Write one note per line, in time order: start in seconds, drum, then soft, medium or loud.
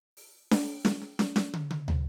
0.17 open hi-hat medium
0.52 open hi-hat loud
0.52 snare loud
0.85 snare loud
1.02 snare soft
1.19 snare loud
1.36 snare loud
1.47 hi-hat pedal soft
1.54 high tom loud
1.71 high tom loud
1.88 floor tom loud